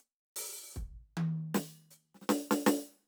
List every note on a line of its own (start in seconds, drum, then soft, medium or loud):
0.00 closed hi-hat soft
0.36 open hi-hat loud
0.73 kick medium
0.73 hi-hat pedal soft
1.17 closed hi-hat soft
1.17 high tom loud
1.54 snare loud
1.90 hi-hat pedal soft
2.14 snare soft
2.21 snare soft
2.29 snare loud
2.51 snare medium
2.66 snare loud